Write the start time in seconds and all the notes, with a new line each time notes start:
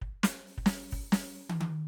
0.01 kick
0.23 closed hi-hat, snare
0.47 open hi-hat
0.58 kick
0.66 open hi-hat, snare
0.91 open hi-hat, kick
1.12 open hi-hat, snare
1.50 high tom
1.61 high tom